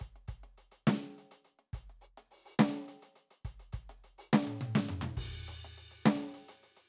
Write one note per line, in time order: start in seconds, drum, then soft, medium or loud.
0.01 closed hi-hat medium
0.01 kick soft
0.17 closed hi-hat soft
0.29 closed hi-hat medium
0.29 kick soft
0.44 closed hi-hat soft
0.58 closed hi-hat medium
0.72 closed hi-hat medium
0.88 snare loud
1.04 closed hi-hat soft
1.19 closed hi-hat medium
1.32 closed hi-hat medium
1.45 closed hi-hat soft
1.60 closed hi-hat soft
1.74 closed hi-hat medium
1.74 kick soft
1.90 open hi-hat soft
2.02 open hi-hat medium
2.18 closed hi-hat medium
2.32 open hi-hat medium
2.46 open hi-hat medium
2.60 snare loud
2.75 closed hi-hat soft
2.89 closed hi-hat medium
3.03 closed hi-hat medium
3.16 closed hi-hat soft
3.31 closed hi-hat soft
3.46 closed hi-hat medium
3.46 kick soft
3.60 closed hi-hat soft
3.73 closed hi-hat medium
3.73 kick soft
3.90 closed hi-hat medium
4.05 open hi-hat medium
4.19 open hi-hat medium
4.34 snare loud
4.48 high tom medium
4.62 high tom medium
4.76 snare loud
4.89 mid tom medium
5.02 mid tom medium
5.13 hi-hat pedal soft
5.18 kick soft
5.18 crash medium
5.23 kick soft
5.49 closed hi-hat loud
5.65 closed hi-hat medium
5.78 closed hi-hat medium
5.92 closed hi-hat medium
6.06 snare loud
6.22 closed hi-hat soft
6.35 closed hi-hat medium
6.49 closed hi-hat medium
6.64 closed hi-hat soft
6.77 closed hi-hat soft